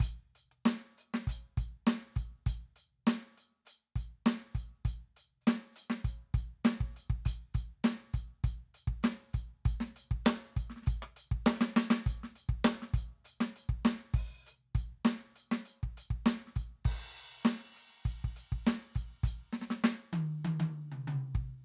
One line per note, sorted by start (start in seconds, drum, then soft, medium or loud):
0.05 closed hi-hat loud
0.05 kick medium
0.35 closed hi-hat medium
0.51 closed hi-hat soft
0.65 closed hi-hat medium
0.65 snare loud
0.98 open hi-hat medium
0.98 hi-hat pedal soft
1.14 snare medium
1.27 closed hi-hat loud
1.27 kick medium
1.57 closed hi-hat medium
1.57 kick medium
1.87 open hi-hat loud
1.87 snare loud
1.87 hi-hat pedal soft
2.16 closed hi-hat medium
2.16 kick medium
2.46 closed hi-hat loud
2.46 kick medium
2.76 closed hi-hat medium
3.07 closed hi-hat loud
3.07 snare loud
3.37 closed hi-hat medium
3.65 closed hi-hat medium
3.65 hi-hat pedal soft
3.96 closed hi-hat medium
3.96 kick medium
4.25 closed hi-hat medium
4.25 snare loud
4.25 hi-hat pedal soft
4.55 closed hi-hat medium
4.55 kick medium
4.85 closed hi-hat medium
4.85 kick medium
5.16 closed hi-hat medium
5.41 hi-hat pedal soft
5.47 closed hi-hat medium
5.47 snare loud
5.72 closed hi-hat medium
5.72 hi-hat pedal soft
5.90 snare medium
6.04 closed hi-hat medium
6.04 kick medium
6.34 closed hi-hat medium
6.34 kick medium
6.64 closed hi-hat medium
6.64 snare loud
6.80 kick medium
6.96 closed hi-hat medium
7.10 kick medium
7.25 closed hi-hat loud
7.25 kick medium
7.54 closed hi-hat medium
7.54 kick medium
7.73 kick soft
7.84 closed hi-hat loud
7.84 snare loud
8.13 closed hi-hat medium
8.13 kick medium
8.44 closed hi-hat medium
8.44 kick medium
8.74 closed hi-hat medium
8.87 kick medium
9.03 closed hi-hat medium
9.03 snare loud
9.33 closed hi-hat medium
9.33 kick medium
9.65 closed hi-hat medium
9.65 kick medium
9.80 snare medium
9.96 closed hi-hat medium
10.11 kick medium
10.25 closed hi-hat medium
10.25 snare loud
10.56 closed hi-hat medium
10.56 kick medium
10.70 snare soft
10.76 snare soft
10.82 snare soft
10.86 closed hi-hat medium
10.86 kick medium
11.02 cross-stick medium
11.16 closed hi-hat medium
11.31 kick medium
11.46 closed hi-hat loud
11.46 snare loud
11.61 snare loud
11.76 snare loud
11.90 snare loud
12.06 closed hi-hat medium
12.06 kick medium
12.23 snare soft
12.35 closed hi-hat medium
12.49 kick medium
12.64 closed hi-hat medium
12.64 snare loud
12.82 snare soft
12.94 open hi-hat medium
12.94 kick medium
13.25 closed hi-hat medium
13.25 hi-hat pedal medium
13.40 snare loud
13.56 closed hi-hat medium
13.69 kick medium
13.85 closed hi-hat medium
13.85 snare loud
14.14 open hi-hat loud
14.14 kick medium
14.46 open hi-hat medium
14.46 hi-hat pedal medium
14.75 closed hi-hat medium
14.75 kick medium
14.92 kick soft
15.05 closed hi-hat medium
15.05 snare loud
15.36 closed hi-hat medium
15.51 snare loud
15.65 closed hi-hat medium
15.83 kick medium
15.97 closed hi-hat medium
16.10 kick medium
16.26 closed hi-hat loud
16.26 snare loud
16.47 snare soft
16.55 closed hi-hat medium
16.55 kick medium
16.85 kick medium
16.85 crash medium
17.16 closed hi-hat medium
17.45 closed hi-hat medium
17.45 snare loud
17.76 closed hi-hat medium
18.05 closed hi-hat medium
18.05 kick medium
18.24 kick medium
18.36 closed hi-hat medium
18.52 kick medium
18.66 closed hi-hat medium
18.66 snare loud
18.95 closed hi-hat medium
18.95 kick medium
19.23 closed hi-hat loud
19.23 kick medium
19.53 snare medium
19.61 snare medium
19.70 snare medium
19.84 snare loud
20.13 high tom loud
20.45 high tom loud
20.60 high tom loud
20.92 mid tom medium
21.07 mid tom loud
21.35 kick medium